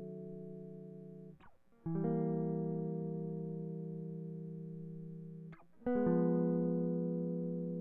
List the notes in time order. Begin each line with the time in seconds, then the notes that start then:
1.87 E3
1.96 G3
2.04 A#3
5.87 B3
5.96 G#3
6.07 F3